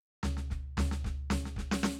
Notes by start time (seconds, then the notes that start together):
0.23 snare, floor tom
0.37 snare
0.50 kick, snare
0.77 snare, floor tom
0.91 snare
1.04 kick, snare
1.30 snare, floor tom
1.45 snare
1.56 kick, snare
1.71 snare
1.83 snare